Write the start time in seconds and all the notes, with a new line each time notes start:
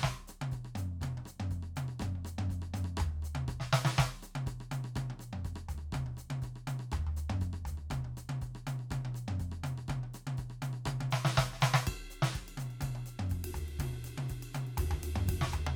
0.01 kick, snare, hi-hat pedal
0.28 cross-stick, hi-hat pedal
0.42 high tom
0.52 kick, cross-stick, hi-hat pedal
0.65 cross-stick
0.76 hi-hat pedal, mid tom
1.01 kick, cross-stick, hi-hat pedal, high tom
1.17 high tom
1.26 cross-stick, hi-hat pedal
1.40 mid tom
1.51 kick, cross-stick, hi-hat pedal
1.63 cross-stick
1.76 hi-hat pedal, high tom
1.88 cross-stick
2.00 kick, cross-stick, hi-hat pedal, mid tom
2.16 mid tom
2.25 cross-stick, hi-hat pedal
2.39 mid tom
2.50 kick, cross-stick, hi-hat pedal
2.62 cross-stick
2.74 hi-hat pedal, mid tom
2.85 cross-stick
2.97 kick, cross-stick, floor tom, hi-hat pedal
3.23 cross-stick, hi-hat pedal
3.35 high tom
3.48 kick, cross-stick, hi-hat pedal
3.60 snare
3.73 snare, hi-hat pedal
3.85 snare
3.97 kick, snare, hi-hat pedal
4.23 cross-stick, hi-hat pedal
4.36 high tom
4.47 kick, cross-stick, hi-hat pedal
4.61 cross-stick
4.72 hi-hat pedal, high tom
4.84 cross-stick
4.96 kick, cross-stick, hi-hat pedal, high tom
5.10 high tom
5.20 cross-stick, hi-hat pedal
5.33 mid tom
5.45 kick, cross-stick, hi-hat pedal
5.56 cross-stick
5.69 floor tom, hi-hat pedal
5.78 cross-stick
5.93 kick, cross-stick, hi-hat pedal, high tom
6.06 high tom
6.10 high tom
6.17 cross-stick, hi-hat pedal
6.30 high tom
6.42 kick, cross-stick, hi-hat pedal
6.56 cross-stick
6.68 hi-hat pedal, high tom
6.80 cross-stick
6.92 kick, cross-stick, floor tom, hi-hat pedal
7.07 floor tom
7.17 cross-stick, hi-hat pedal
7.30 mid tom
7.41 kick, cross-stick, hi-hat pedal
7.53 cross-stick
7.66 floor tom, hi-hat pedal
7.78 cross-stick
7.91 kick, cross-stick, hi-hat pedal, high tom
8.05 high tom
8.17 cross-stick, hi-hat pedal
8.29 high tom
8.42 kick, cross-stick, hi-hat pedal
8.55 cross-stick
8.67 hi-hat pedal, high tom
8.79 cross-stick
8.91 kick, cross-stick, hi-hat pedal, high tom
9.05 high tom
9.15 cross-stick, hi-hat pedal
9.28 mid tom
9.40 kick, cross-stick, hi-hat pedal
9.52 cross-stick
9.64 hi-hat pedal, high tom
9.78 cross-stick
9.88 kick, cross-stick, hi-hat pedal, high tom
10.03 high tom
10.14 cross-stick, hi-hat pedal
10.27 high tom
10.37 kick, cross-stick, hi-hat pedal
10.50 cross-stick
10.62 hi-hat pedal, high tom
10.73 cross-stick
10.86 kick, cross-stick, hi-hat pedal, high tom
11.01 high tom
11.11 snare, hi-hat pedal
11.25 snare
11.35 kick, snare, hi-hat pedal
11.53 snare
11.57 snare
11.59 snare, hi-hat pedal
11.62 snare
11.74 snare
11.85 kick, hi-hat pedal, ride bell
12.11 hi-hat pedal
12.23 snare
12.34 kick, hi-hat pedal, ride bell
12.48 ride bell
12.58 hi-hat pedal, high tom
12.71 ride bell
12.81 kick, hi-hat pedal, high tom, ride bell
12.95 high tom
13.06 hi-hat pedal, ride
13.19 mid tom
13.30 kick, hi-hat pedal, ride
13.45 ride
13.55 floor tom, hi-hat pedal
13.68 ride
13.79 kick, hi-hat pedal, high tom, ride
13.93 high tom
13.97 high tom
14.05 hi-hat pedal, ride
14.18 high tom
14.29 kick, hi-hat pedal, ride
14.43 ride bell
14.54 hi-hat pedal, high tom
14.67 ride
14.78 kick, floor tom, hi-hat pedal, ride
14.91 floor tom
15.03 hi-hat pedal, ride
15.16 mid tom
15.27 kick, hi-hat pedal, ride
15.41 snare
15.52 kick, floor tom, hi-hat pedal
15.67 high tom